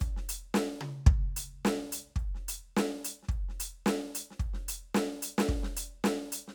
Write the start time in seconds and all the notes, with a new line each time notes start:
0.01 closed hi-hat, kick
0.17 snare
0.30 closed hi-hat
0.55 snare
0.82 high tom
1.07 kick
1.37 closed hi-hat
1.66 snare
1.93 closed hi-hat
2.16 kick, closed hi-hat
2.35 snare
2.49 closed hi-hat
2.77 snare
3.05 closed hi-hat
3.23 snare
3.29 kick, closed hi-hat
3.49 snare
3.61 closed hi-hat
3.87 snare
4.16 closed hi-hat
4.31 snare
4.40 kick, closed hi-hat
4.54 snare
4.69 closed hi-hat
4.95 snare
5.23 closed hi-hat
5.39 snare
5.49 kick
5.64 snare
5.77 closed hi-hat
6.05 snare
6.33 closed hi-hat
6.48 snare